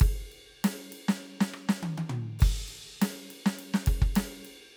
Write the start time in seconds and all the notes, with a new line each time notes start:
0.00 kick, ride
0.32 ride
0.64 snare, ride
0.92 ride
1.08 snare
1.41 snare
1.54 cross-stick
1.69 snare
1.83 high tom
1.98 high tom
2.10 mid tom
2.39 kick, crash, ride
2.68 ride
3.02 snare, ride
3.31 ride
3.46 snare
3.59 ride
3.74 snare
3.86 kick, ride
4.02 kick
4.16 snare, ride
4.45 ride